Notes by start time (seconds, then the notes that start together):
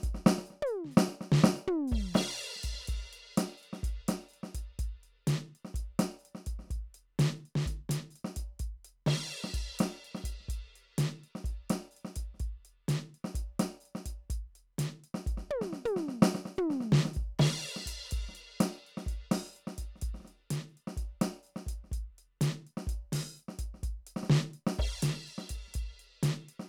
0.01 kick, closed hi-hat, hi-hat pedal
0.11 kick, snare
0.26 snare
0.38 snare
0.45 hi-hat pedal
0.50 snare
0.62 high tom
0.66 hi-hat pedal
0.85 snare
0.91 hi-hat pedal
0.97 snare
1.08 snare
1.12 hi-hat pedal
1.21 snare
1.32 snare, hi-hat pedal
1.44 snare
1.55 snare, hi-hat pedal
1.67 floor tom
1.88 hi-hat pedal
1.92 kick, crash
2.14 snare, crash
2.40 closed hi-hat
2.56 snare
2.63 closed hi-hat, kick
2.74 snare
2.87 closed hi-hat, kick
2.94 kick
3.13 closed hi-hat
3.32 hi-hat pedal
3.37 closed hi-hat, snare
3.58 hi-hat pedal
3.63 closed hi-hat
3.73 snare
3.83 closed hi-hat, kick
4.08 closed hi-hat, snare
4.29 hi-hat pedal
4.34 closed hi-hat
4.43 snare
4.54 closed hi-hat, kick
4.79 closed hi-hat, kick
5.03 closed hi-hat
5.27 closed hi-hat, snare
5.55 closed hi-hat
5.65 snare
5.74 closed hi-hat, kick
5.99 closed hi-hat, snare
6.19 hi-hat pedal
6.25 closed hi-hat
6.35 snare
6.46 closed hi-hat, kick
6.59 snare
6.64 snare
6.67 closed hi-hat, kick, snare
6.76 kick
6.94 closed hi-hat
7.19 closed hi-hat, snare
7.36 hi-hat pedal
7.45 closed hi-hat
7.55 snare
7.66 closed hi-hat, kick
7.89 closed hi-hat, snare
8.11 hi-hat pedal
8.16 closed hi-hat
8.25 snare
8.36 closed hi-hat, kick
8.59 closed hi-hat, kick
8.85 closed hi-hat
9.06 snare, crash
9.29 closed hi-hat, hi-hat pedal
9.44 snare
9.53 closed hi-hat, kick, snare
9.79 closed hi-hat, snare
10.04 closed hi-hat
10.15 snare
10.24 closed hi-hat, kick
10.40 snare
10.49 closed hi-hat, kick
10.75 closed hi-hat
10.98 closed hi-hat, snare
11.24 closed hi-hat
11.35 snare
11.44 closed hi-hat, kick
11.70 closed hi-hat, snare
11.91 hi-hat pedal
11.97 closed hi-hat
12.05 snare
12.16 closed hi-hat, kick
12.34 snare
12.40 closed hi-hat, kick
12.65 closed hi-hat
12.88 closed hi-hat, snare
13.14 closed hi-hat
13.24 snare
13.35 closed hi-hat, kick
13.59 open hi-hat, snare
13.80 hi-hat pedal
13.85 closed hi-hat
13.95 snare
14.06 closed hi-hat, kick
14.30 closed hi-hat, kick
14.55 closed hi-hat
14.78 closed hi-hat, snare
15.04 closed hi-hat
15.14 snare
15.26 kick, closed hi-hat
15.34 kick, snare
15.48 kick, high tom
15.62 snare
15.73 snare
15.85 hi-hat pedal, mid tom
15.96 snare
16.08 snare
16.22 snare, hi-hat pedal
16.35 snare
16.45 snare
16.56 floor tom, hi-hat pedal
16.70 snare
16.81 snare
16.92 snare
17.05 snare
17.13 kick, hi-hat pedal
17.22 kick
17.39 snare, crash
17.65 closed hi-hat
17.76 snare
17.86 closed hi-hat, kick
18.11 closed hi-hat, kick
18.29 snare
18.35 closed hi-hat
18.60 closed hi-hat, snare
18.87 closed hi-hat
18.97 snare
19.06 closed hi-hat, kick
19.14 kick
19.31 open hi-hat, snare
19.43 snare
19.53 closed hi-hat, hi-hat pedal
19.67 snare
19.78 closed hi-hat, kick
19.96 snare
20.02 closed hi-hat, kick
20.14 snare
20.20 snare
20.25 snare, closed hi-hat
20.50 closed hi-hat, snare
20.68 hi-hat pedal
20.77 closed hi-hat
20.87 snare
20.97 closed hi-hat, kick
21.21 closed hi-hat, snare
21.43 closed hi-hat, hi-hat pedal
21.56 snare
21.66 closed hi-hat, kick, snare
21.84 snare
21.91 closed hi-hat, kick, snare
21.97 kick
22.18 closed hi-hat
22.41 closed hi-hat, snare
22.67 closed hi-hat
22.77 snare
22.87 closed hi-hat, kick
22.94 kick
23.12 open hi-hat, snare
23.35 closed hi-hat, hi-hat pedal
23.48 snare
23.59 closed hi-hat, kick
23.74 snare
23.81 closed hi-hat, kick, snare
23.84 snare
24.07 closed hi-hat
24.16 snare
24.23 snare
24.30 snare
24.44 snare
24.53 open hi-hat
24.67 snare
24.74 hi-hat pedal
24.79 kick, crash
24.85 kick
24.87 kick
25.02 closed hi-hat, snare
25.27 closed hi-hat
25.38 snare
25.49 closed hi-hat, kick
25.68 snare
25.74 closed hi-hat, kick
25.99 closed hi-hat
26.23 closed hi-hat, snare
26.49 closed hi-hat
26.60 snare